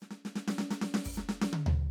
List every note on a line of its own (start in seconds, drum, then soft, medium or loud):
0.00 snare soft
0.00 hi-hat pedal soft
0.11 snare soft
0.25 snare medium
0.35 snare medium
0.48 snare medium
0.48 hi-hat pedal soft
0.58 snare medium
0.70 snare medium
0.70 hi-hat pedal soft
0.81 snare medium
0.94 snare medium
1.04 open hi-hat loud
1.04 kick medium
1.13 hi-hat pedal medium
1.17 snare medium
1.29 snare medium
1.42 snare medium
1.53 high tom loud
1.66 floor tom loud